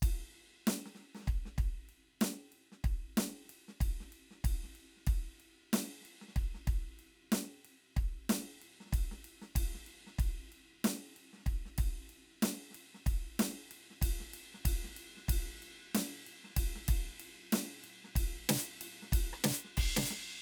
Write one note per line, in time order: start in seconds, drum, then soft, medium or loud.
0.02 kick medium
0.02 ride loud
0.67 snare loud
0.67 ride medium
0.86 snare soft
0.95 snare soft
0.95 ride soft
0.99 snare soft
1.01 snare soft
1.15 snare medium
1.20 snare soft
1.23 snare soft
1.26 kick medium
1.26 snare soft
1.26 ride soft
1.46 snare soft
1.58 kick medium
1.58 ride medium
1.89 ride soft
2.21 snare loud
2.21 ride medium
2.52 ride soft
2.72 snare soft
2.84 kick medium
2.84 ride medium
3.17 snare loud
3.17 ride medium
3.39 snare soft
3.45 snare soft
3.50 ride medium
3.68 snare soft
3.81 kick medium
3.81 ride medium
4.00 snare soft
4.03 snare soft
4.12 ride soft
4.31 snare soft
4.34 snare soft
4.44 kick medium
4.44 ride medium
4.64 snare soft
4.75 ride soft
4.97 snare soft
5.07 kick medium
5.07 ride medium
5.40 ride soft
5.56 ride soft
5.73 snare loud
5.73 ride loud
6.01 snare soft
6.05 ride soft
6.17 ride soft
6.22 snare soft
6.28 snare soft
6.32 snare soft
6.36 kick medium
6.36 ride medium
6.55 snare soft
6.67 kick medium
6.67 ride medium
6.99 ride soft
7.32 snare loud
7.32 ride medium
7.62 snare soft
7.62 ride soft
7.97 kick medium
7.97 ride medium
8.30 snare loud
8.30 ride loud
8.62 ride soft
8.80 snare soft
8.86 snare soft
8.89 snare soft
8.93 kick medium
8.93 snare soft
8.93 ride medium
9.11 snare soft
9.25 ride medium
9.42 snare soft
9.56 kick medium
9.56 ride loud
9.75 snare soft
9.87 ride soft
10.07 snare soft
10.19 kick medium
10.19 ride medium
10.52 ride soft
10.84 snare loud
10.84 ride medium
11.16 ride soft
11.33 snare soft
11.38 snare soft
11.39 snare soft
11.46 kick medium
11.46 ride medium
11.66 snare soft
11.78 kick medium
11.78 ride medium
12.09 ride soft
12.43 snare loud
12.43 ride loud
12.71 snare soft
12.71 ride medium
12.95 snare soft
13.06 kick medium
13.06 ride medium
13.39 snare loud
13.39 ride loud
13.71 ride medium
13.91 snare soft
14.02 kick medium
14.02 ride loud
14.20 snare soft
14.34 ride medium
14.54 snare soft
14.65 kick medium
14.65 ride loud
14.84 snare soft
14.88 snare soft
14.97 ride medium
15.17 snare soft
15.29 kick medium
15.29 ride loud
15.58 ride soft
15.62 ride soft
15.95 snare loud
15.95 ride loud
16.25 snare soft
16.25 ride medium
16.44 snare soft
16.44 ride soft
16.50 snare soft
16.53 kick medium
16.53 snare soft
16.53 ride loud
16.76 snare soft
16.88 kick medium
16.88 ride loud
17.20 ride medium
17.53 snare loud
17.53 ride loud
17.84 ride medium
18.04 snare soft
18.16 kick medium
18.16 ride loud
18.49 snare loud
18.49 ride loud
18.81 ride medium
19.02 snare soft
19.13 kick medium
19.13 ride loud
19.33 cross-stick medium
19.44 snare loud
19.65 snare soft
19.77 kick medium
19.77 ride loud
19.97 snare loud
20.11 snare medium